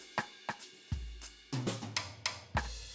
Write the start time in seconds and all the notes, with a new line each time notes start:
0.01 hi-hat pedal
0.19 cross-stick
0.27 hi-hat pedal
0.50 cross-stick
0.60 hi-hat pedal, ride
0.74 snare
0.78 snare
0.88 hi-hat pedal
0.92 kick, ride
0.99 kick
1.03 kick
1.23 hi-hat pedal, ride bell
1.53 mid tom
1.67 snare
1.83 floor tom
1.97 floor tom
2.26 floor tom
2.56 kick, cross-stick, crash
2.62 kick, cross-stick
2.66 kick